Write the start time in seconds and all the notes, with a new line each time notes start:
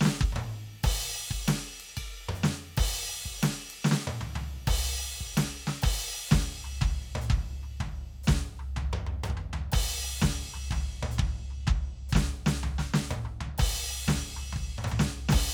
0.01 snare
0.05 snare
0.21 kick
0.32 high tom
0.36 high tom
0.84 kick, crash
1.02 snare
1.31 kick
1.45 snare, hi-hat pedal, ride
1.80 ride
1.88 snare
1.92 snare
1.97 kick, ride bell
2.29 mid tom
2.35 hi-hat pedal
2.44 snare
2.77 kick, crash
2.90 snare
2.98 snare
3.26 kick
3.39 hi-hat pedal
3.43 snare, ride
3.70 ride
3.85 snare
3.91 snare
4.07 high tom
4.21 floor tom
4.36 floor tom
4.67 kick, crash
5.21 kick
5.33 hi-hat pedal
5.37 snare, ride
5.67 snare
5.82 kick, crash
6.28 snare, floor tom, hi-hat pedal
6.32 kick
6.64 floor tom
6.78 kick, floor tom, high tom
7.15 high tom
7.21 hi-hat pedal
7.30 kick, floor tom
7.63 floor tom
7.80 kick, floor tom
8.24 snare, hi-hat pedal
8.28 kick, floor tom
8.59 floor tom
8.77 kick, floor tom
8.93 mid tom
9.07 mid tom
9.23 hi-hat pedal, mid tom
9.30 kick
9.37 floor tom
9.53 floor tom
9.72 kick, crash
10.19 kick, snare, floor tom, hi-hat pedal
10.54 floor tom
10.71 kick, floor tom
11.03 high tom
11.11 hi-hat pedal
11.19 kick, floor tom
11.50 floor tom
11.67 kick, floor tom
12.09 kick, hi-hat pedal
12.15 snare, floor tom
12.46 snare
12.63 kick, floor tom
12.78 snare
12.94 snare
13.09 hi-hat pedal, high tom
13.17 kick
13.25 floor tom
13.41 floor tom
13.58 kick, crash
14.04 hi-hat pedal
14.08 kick, snare, floor tom
14.37 floor tom
14.53 kick, floor tom
14.78 high tom
14.84 hi-hat pedal, high tom
14.89 kick, floor tom
14.99 snare
15.29 kick, snare, hi-hat pedal, crash